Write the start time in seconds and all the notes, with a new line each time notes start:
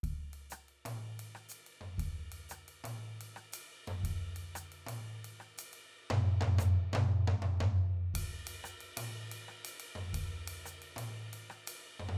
0.03 kick, ride
0.33 ride
0.50 cross-stick, hi-hat pedal
0.68 ride
0.85 mid tom, ride
1.19 ride
1.35 cross-stick
1.49 hi-hat pedal, ride
1.66 ride
1.81 floor tom
1.98 kick, ride
2.32 ride
2.49 cross-stick, hi-hat pedal
2.68 ride
2.84 mid tom, ride
3.21 ride
3.36 cross-stick
3.52 hi-hat pedal, ride
3.87 floor tom, ride
4.03 kick, ride
4.36 ride
4.55 cross-stick, hi-hat pedal
4.72 ride
4.86 mid tom, ride
5.24 ride
5.40 cross-stick
5.58 hi-hat pedal, ride
5.73 ride
6.10 floor tom, mid tom
6.41 floor tom, mid tom
6.58 floor tom, hi-hat pedal
6.93 floor tom, mid tom
7.27 floor tom
7.42 mid tom
7.60 floor tom
8.14 kick, ride
8.47 ride
8.64 cross-stick, hi-hat pedal
8.80 ride
8.97 mid tom, ride
9.31 ride
9.48 cross-stick
9.65 hi-hat pedal, ride
9.80 ride
9.95 floor tom
10.13 kick, ride
10.29 ride
10.47 ride
10.65 cross-stick, hi-hat pedal
10.82 ride
10.96 mid tom, ride
11.33 ride
11.50 cross-stick
11.67 hi-hat pedal, ride
11.99 floor tom
12.09 floor tom